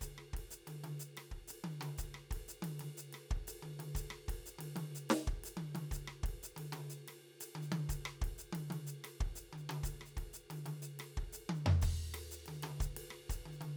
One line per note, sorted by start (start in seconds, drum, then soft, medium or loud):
0.01 kick soft
0.01 hi-hat pedal medium
0.01 ride soft
0.18 cross-stick soft
0.33 kick soft
0.33 ride medium
0.51 hi-hat pedal medium
0.67 high tom medium
0.67 ride medium
0.84 high tom medium
0.84 ride soft
0.99 hi-hat pedal medium
1.17 cross-stick medium
1.17 ride medium
1.31 kick soft
1.48 hi-hat pedal medium
1.48 ride medium
1.64 high tom medium
1.70 hi-hat pedal soft
1.81 high tom medium
1.81 ride medium
1.98 kick soft
1.98 hi-hat pedal medium
1.98 ride soft
2.14 cross-stick medium
2.31 kick soft
2.31 ride medium
2.48 hi-hat pedal medium
2.62 high tom medium
2.62 ride medium
2.80 high tom medium
2.80 ride medium
2.97 hi-hat pedal medium
3.13 cross-stick medium
3.13 ride medium
3.31 kick medium
3.47 hi-hat pedal medium
3.47 ride medium
3.62 high tom medium
3.79 high tom medium
3.79 ride medium
3.95 kick soft
3.95 hi-hat pedal medium
3.95 ride medium
4.10 cross-stick medium
4.28 kick soft
4.28 ride medium
4.46 hi-hat pedal medium
4.59 high tom medium
4.59 ride medium
4.76 high tom medium
4.76 ride medium
4.95 hi-hat pedal medium
5.09 snare medium
5.09 ride soft
5.18 hi-hat pedal soft
5.27 kick medium
5.44 hi-hat pedal medium
5.44 ride medium
5.57 high tom medium
5.75 high tom medium
5.75 ride medium
5.91 kick soft
5.91 hi-hat pedal medium
5.91 ride soft
6.08 cross-stick medium
6.23 kick medium
6.23 ride medium
6.43 hi-hat pedal medium
6.56 high tom medium
6.56 ride medium
6.65 hi-hat pedal soft
6.72 high tom medium
6.72 ride medium
6.90 hi-hat pedal medium
7.08 cross-stick soft
7.08 ride medium
7.40 hi-hat pedal medium
7.40 ride medium
7.55 high tom medium
7.62 hi-hat pedal soft
7.72 high tom loud
7.72 ride soft
7.89 kick soft
7.89 hi-hat pedal medium
7.89 ride medium
8.05 cross-stick medium
8.22 kick medium
8.22 ride medium
8.38 hi-hat pedal medium
8.53 high tom medium
8.53 ride medium
8.70 high tom medium
8.70 ride soft
8.87 hi-hat pedal medium
9.04 cross-stick medium
9.04 ride medium
9.20 kick medium
9.35 hi-hat pedal medium
9.35 ride soft
9.53 high tom medium
9.58 hi-hat pedal soft
9.69 high tom medium
9.69 ride soft
9.83 kick soft
9.83 hi-hat pedal medium
9.83 ride medium
10.01 cross-stick soft
10.06 hi-hat pedal soft
10.17 kick soft
10.17 ride soft
10.33 hi-hat pedal medium
10.50 high tom medium
10.50 ride soft
10.56 hi-hat pedal soft
10.66 high tom medium
10.66 ride medium
10.82 hi-hat pedal medium
10.99 cross-stick medium
10.99 ride medium
11.03 hi-hat pedal soft
11.17 kick medium
11.33 hi-hat pedal medium
11.33 ride medium
11.49 high tom loud
11.55 hi-hat pedal soft
11.66 floor tom loud
11.82 kick medium
11.82 hi-hat pedal medium
11.82 crash medium
12.14 cross-stick medium
12.14 ride medium
12.31 hi-hat pedal medium
12.46 high tom medium
12.46 ride soft
12.53 hi-hat pedal soft
12.63 high tom medium
12.63 ride medium
12.80 kick medium
12.80 hi-hat pedal medium
12.97 ride medium
13.11 cross-stick medium
13.29 kick medium
13.29 hi-hat pedal medium
13.29 ride medium
13.45 high tom medium
13.52 hi-hat pedal soft
13.61 high tom medium
13.61 ride soft